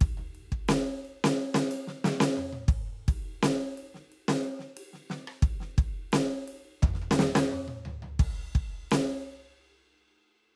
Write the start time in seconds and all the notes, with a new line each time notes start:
0.01 kick, ride
0.17 floor tom
0.35 ride
0.52 kick
0.69 snare, ride
1.05 ride bell
1.24 snare
1.29 hi-hat pedal
1.41 ride
1.55 snare
1.71 ride bell
1.88 snare
2.04 snare, hi-hat pedal
2.21 snare
2.37 mid tom
2.53 high tom
2.68 kick, crash
2.87 high tom
3.08 kick, ride
3.43 snare, hi-hat pedal, ride
3.78 ride
3.95 snare
4.12 ride
4.29 snare
4.44 ride
4.60 snare
4.77 ride
4.93 snare
5.10 snare
5.28 cross-stick
5.43 kick, ride
5.61 snare
5.78 kick, ride
6.12 snare, ride
6.48 ride
6.83 kick, mid tom
6.94 snare
7.02 mid tom
7.11 snare
7.19 snare
7.36 snare
7.52 mid tom
7.68 high tom
7.85 floor tom
8.03 floor tom
8.19 kick, crash
8.55 kick
8.91 snare, ride